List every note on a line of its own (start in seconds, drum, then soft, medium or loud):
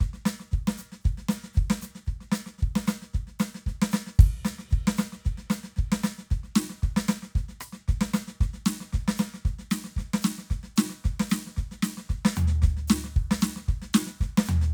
0.01 kick medium
0.01 snare soft
0.14 snare soft
0.26 snare loud
0.26 hi-hat pedal medium
0.40 snare soft
0.52 kick medium
0.52 snare soft
0.68 snare loud
0.78 snare soft
0.78 hi-hat pedal medium
0.93 snare soft
1.01 snare soft
1.01 hi-hat pedal soft
1.06 kick medium
1.18 snare soft
1.29 snare loud
1.29 hi-hat pedal medium
1.44 snare soft
1.54 snare soft
1.54 hi-hat pedal soft
1.58 kick medium
1.71 snare loud
1.82 snare soft
1.82 hi-hat pedal medium
1.96 snare soft
2.05 kick soft
2.05 snare soft
2.05 hi-hat pedal soft
2.21 snare soft
2.32 snare loud
2.32 hi-hat pedal medium
2.47 snare soft
2.59 snare soft
2.63 kick medium
2.76 snare loud
2.88 snare loud
2.88 hi-hat pedal medium
3.02 snare soft
3.14 kick medium
3.14 snare soft
3.28 snare soft
3.40 snare loud
3.40 hi-hat pedal medium
3.55 snare soft
3.67 kick soft
3.67 snare soft
3.82 snare loud
3.92 snare loud
3.92 hi-hat pedal medium
4.07 snare soft
4.16 kick loud
4.16 hi-hat pedal soft
4.21 ride medium
4.45 snare medium
4.45 hi-hat pedal medium
4.59 snare soft
4.70 kick medium
4.70 snare soft
4.70 hi-hat pedal soft
4.88 snare loud
4.97 snare loud
4.97 hi-hat pedal medium
5.13 snare soft
5.25 kick medium
5.25 snare soft
5.38 snare soft
5.51 snare loud
5.51 hi-hat pedal medium
5.64 snare soft
5.77 kick medium
5.77 snare soft
5.92 snare loud
6.04 snare medium
6.04 hi-hat pedal medium
6.19 snare soft
6.31 kick medium
6.31 snare soft
6.44 snare soft
6.56 snare loud
6.56 hi-hat pedal medium
6.70 snare soft
6.83 kick medium
6.83 snare soft
6.97 snare loud
7.08 snare loud
7.08 hi-hat pedal medium
7.23 snare soft
7.36 kick medium
7.36 snare soft
7.49 snare soft
7.61 cross-stick medium
7.61 hi-hat pedal medium
7.73 snare soft
7.88 kick medium
7.88 snare soft
8.01 snare loud
8.14 snare loud
8.14 hi-hat pedal medium
8.28 snare soft
8.41 kick medium
8.41 snare soft
8.54 snare soft
8.66 snare loud
8.66 hi-hat pedal medium
8.81 snare soft
8.93 kick medium
8.93 snare soft
9.08 snare loud
9.18 snare loud
9.18 hi-hat pedal medium
9.34 snare soft
9.46 kick medium
9.46 snare soft
9.59 snare soft
9.71 snare loud
9.71 hi-hat pedal medium
9.85 snare soft
9.97 kick soft
9.97 snare soft
10.14 snare loud
10.22 snare loud
10.22 hi-hat pedal medium
10.39 snare soft
10.51 kick medium
10.51 snare soft
10.64 snare soft
10.77 snare loud
10.77 hi-hat pedal medium
10.90 snare soft
11.05 kick medium
11.05 snare soft
11.20 snare medium
11.30 snare loud
11.30 hi-hat pedal medium
11.47 snare soft
11.57 kick medium
11.57 snare soft
11.72 snare soft
11.83 snare loud
11.83 hi-hat pedal medium
11.98 snare soft
12.10 kick medium
12.10 snare soft
12.26 snare loud
12.36 floor tom loud
12.36 hi-hat pedal medium
12.48 snare soft
12.62 kick medium
12.62 snare medium
12.77 snare soft
12.88 snare loud
12.88 hi-hat pedal medium
13.04 snare soft
13.16 kick medium
13.16 snare soft
13.32 snare loud
13.41 snare loud
13.41 hi-hat pedal medium
13.57 snare soft
13.69 kick medium
13.69 snare soft
13.82 snare soft
13.94 snare loud
13.94 hi-hat pedal medium
14.07 snare soft
14.21 kick medium
14.21 snare soft
14.38 snare loud
14.46 floor tom loud
14.46 hi-hat pedal medium
14.62 snare soft